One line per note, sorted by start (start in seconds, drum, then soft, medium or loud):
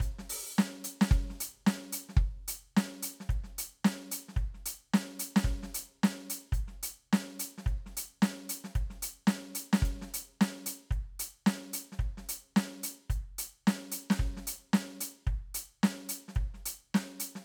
0.01 closed hi-hat soft
0.01 kick medium
0.20 snare soft
0.31 open hi-hat loud
0.55 snare loud
0.55 hi-hat pedal soft
0.85 closed hi-hat loud
1.02 snare loud
1.12 kick loud
1.12 closed hi-hat medium
1.31 snare soft
1.41 closed hi-hat loud
1.67 snare loud
1.94 closed hi-hat loud
2.10 snare soft
2.18 kick loud
2.18 closed hi-hat soft
2.49 closed hi-hat loud
2.78 snare loud
3.04 closed hi-hat loud
3.21 snare soft
3.30 kick medium
3.30 closed hi-hat soft
3.45 snare soft
3.59 closed hi-hat loud
3.86 snare loud
4.12 closed hi-hat loud
4.29 snare soft
4.37 kick medium
4.37 closed hi-hat soft
4.55 snare soft
4.67 closed hi-hat loud
4.95 snare loud
5.20 closed hi-hat loud
5.37 snare loud
5.45 kick medium
5.45 closed hi-hat soft
5.64 snare soft
5.75 closed hi-hat loud
6.04 snare loud
6.31 closed hi-hat loud
6.53 closed hi-hat medium
6.53 kick medium
6.69 snare soft
6.84 closed hi-hat loud
7.14 snare loud
7.41 closed hi-hat loud
7.59 snare soft
7.67 kick medium
7.67 closed hi-hat soft
7.87 snare soft
7.98 closed hi-hat loud
8.23 snare loud
8.50 closed hi-hat loud
8.65 snare medium
8.76 kick medium
8.76 closed hi-hat medium
8.91 snare soft
9.03 closed hi-hat loud
9.28 snare loud
9.56 closed hi-hat loud
9.74 snare loud
9.83 kick medium
9.83 closed hi-hat medium
10.02 snare medium
10.15 closed hi-hat loud
10.42 snare loud
10.67 closed hi-hat loud
10.92 kick medium
10.92 closed hi-hat soft
11.20 closed hi-hat loud
11.47 snare loud
11.74 closed hi-hat loud
11.93 snare soft
12.00 kick medium
12.00 closed hi-hat soft
12.18 snare soft
12.30 closed hi-hat loud
12.57 snare loud
12.84 closed hi-hat loud
13.11 closed hi-hat soft
13.11 kick medium
13.39 closed hi-hat loud
13.68 snare loud
13.93 closed hi-hat loud
14.11 snare loud
14.20 kick medium
14.38 snare soft
14.48 closed hi-hat loud
14.74 snare loud
15.02 closed hi-hat loud
15.28 kick medium
15.28 closed hi-hat soft
15.55 closed hi-hat loud
15.84 snare loud
16.10 closed hi-hat loud
16.29 snare soft
16.36 kick medium
16.36 closed hi-hat soft
16.55 snare soft
16.67 closed hi-hat loud
16.95 snare loud
17.21 closed hi-hat loud
17.36 snare medium